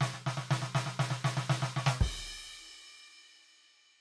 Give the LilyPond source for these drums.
\new DrumStaff \drummode { \time 4/4 \tempo 4 = 120 sn16 sn16 sn16 sn16 sn16 sn16 sn16 sn16 sn16 sn16 sn16 sn16 sn16 sn16 sn16 sn16 | <cymc bd>4 r4 r4 r4 | }